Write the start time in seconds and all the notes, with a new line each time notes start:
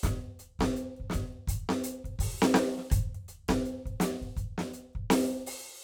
0.01 closed hi-hat, kick, snare, hi-hat pedal
0.24 closed hi-hat
0.39 closed hi-hat
0.59 kick, snare, closed hi-hat
0.76 closed hi-hat
0.97 kick, closed hi-hat
1.10 closed hi-hat, snare
1.14 kick
1.32 closed hi-hat
1.48 closed hi-hat, kick
1.69 snare
1.84 closed hi-hat
2.04 kick, closed hi-hat
2.19 open hi-hat, kick
2.42 snare
2.54 kick, snare
2.78 snare
2.90 closed hi-hat, kick, cross-stick, hi-hat pedal
3.15 closed hi-hat
3.28 closed hi-hat
3.48 kick, snare, closed hi-hat
3.65 closed hi-hat
3.86 kick, closed hi-hat
4.00 closed hi-hat, snare
4.21 kick, closed hi-hat
4.37 closed hi-hat, kick
4.58 snare, closed hi-hat
4.73 closed hi-hat
4.93 kick, closed hi-hat
5.10 open hi-hat, snare
5.38 kick
5.47 open hi-hat